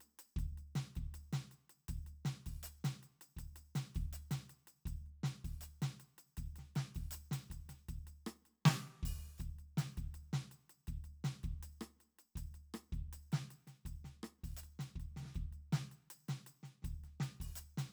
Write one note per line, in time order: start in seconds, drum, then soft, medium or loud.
0.01 percussion soft
0.19 percussion medium
0.37 kick soft
0.37 percussion soft
0.58 percussion soft
0.76 snare medium
0.76 percussion soft
0.96 kick soft
0.96 percussion soft
1.14 percussion soft
1.33 snare medium
1.33 percussion soft
1.52 percussion soft
1.70 percussion soft
1.89 kick soft
1.89 percussion medium
2.07 percussion soft
2.25 snare medium
2.25 percussion soft
2.46 kick soft
2.46 percussion soft
2.63 percussion medium
2.66 percussion soft
2.85 snare medium
2.85 percussion medium
3.03 percussion soft
3.21 percussion soft
3.37 kick soft
3.37 percussion soft
3.56 percussion soft
3.75 snare medium
3.75 percussion medium
3.95 kick soft
3.95 percussion soft
4.13 percussion medium
4.31 snare medium
4.31 percussion medium
4.50 percussion soft
4.67 percussion soft
4.86 kick soft
4.86 percussion soft
5.06 percussion soft
5.24 snare medium
5.24 percussion soft
5.45 kick soft
5.45 percussion soft
5.61 percussion medium
5.64 percussion soft
5.82 snare medium
5.82 percussion soft
6.00 percussion soft
6.18 percussion soft
6.37 kick soft
6.37 percussion soft
6.56 snare soft
6.56 percussion soft
6.76 snare medium
6.76 percussion soft
6.95 kick soft
6.95 percussion soft
7.11 percussion medium
7.15 percussion soft
7.32 snare medium
7.32 percussion medium
7.50 kick soft
7.50 percussion soft
7.69 snare soft
7.69 percussion soft
7.89 kick soft
7.89 percussion soft
8.07 percussion soft
8.27 cross-stick medium
8.27 percussion soft
8.46 percussion soft
8.66 snare medium
8.66 percussion medium
8.68 snare medium
8.68 percussion soft
9.03 kick soft
9.03 percussion medium
9.38 kick soft
9.38 percussion soft
9.41 percussion soft
9.59 percussion soft
9.78 snare medium
9.78 percussion medium
9.98 kick soft
9.98 percussion soft
10.15 percussion soft
10.33 snare medium
10.33 percussion soft
10.52 percussion soft
10.70 percussion soft
10.88 kick soft
10.88 percussion soft
11.04 percussion soft
11.24 snare medium
11.24 percussion soft
11.44 kick soft
11.44 percussion soft
11.63 percussion medium
11.81 cross-stick medium
11.81 percussion soft
12.01 percussion soft
12.19 percussion soft
12.36 kick soft
12.36 percussion medium
12.55 percussion soft
12.74 cross-stick medium
12.74 percussion soft
12.93 kick soft
12.93 percussion soft
13.13 percussion medium
13.32 snare medium
13.32 percussion soft
13.51 percussion soft
13.67 snare soft
13.67 percussion soft
13.85 kick soft
13.85 percussion soft
14.05 snare soft
14.05 percussion soft
14.23 cross-stick medium
14.23 percussion soft
14.44 kick soft
14.44 percussion soft
14.57 percussion medium
14.64 percussion soft
14.79 snare soft
14.79 percussion soft
14.96 kick soft
15.00 percussion soft
15.17 snare soft
15.17 percussion soft
15.20 snare soft
15.23 snare soft
15.25 snare soft
15.30 snare soft
15.35 kick soft
15.35 percussion soft
15.53 percussion soft
15.73 snare medium
15.73 percussion soft
15.92 percussion soft
16.10 percussion medium
16.29 snare soft
16.29 percussion soft
16.47 percussion soft
16.63 snare soft
16.63 percussion soft
16.82 kick soft
16.82 snare soft
16.82 percussion soft
17.04 snare soft
17.04 percussion soft
17.20 snare medium
17.20 percussion soft
17.40 kick soft
17.40 percussion soft
17.56 percussion medium
17.60 percussion soft
17.78 snare medium
17.78 percussion medium